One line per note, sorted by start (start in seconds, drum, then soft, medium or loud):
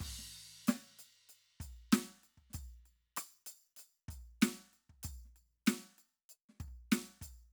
0.01 kick soft
0.01 crash medium
0.07 kick soft
0.19 snare soft
0.25 snare soft
0.28 snare soft
0.32 snare soft
0.37 percussion soft
0.68 snare loud
0.68 percussion medium
0.99 percussion soft
1.29 percussion soft
1.60 kick soft
1.60 percussion soft
1.92 snare loud
1.92 percussion medium
2.24 percussion soft
2.38 kick soft
2.50 snare soft
2.54 kick soft
2.54 snare soft
2.54 percussion medium
2.86 percussion soft
3.17 cross-stick medium
3.17 percussion loud
3.47 percussion medium
3.77 percussion soft
3.79 percussion soft
4.09 kick soft
4.09 percussion soft
4.42 snare loud
4.42 percussion medium
4.73 percussion soft
4.90 kick soft
5.03 kick soft
5.03 percussion medium
5.25 snare soft
5.36 percussion soft
5.67 snare medium
5.67 percussion medium
5.99 percussion soft
6.30 percussion soft
6.49 snare soft
6.53 snare soft
6.55 snare soft
6.60 kick soft
6.60 percussion soft
6.68 kick soft
6.92 snare medium
6.92 percussion medium
7.22 kick soft
7.22 percussion medium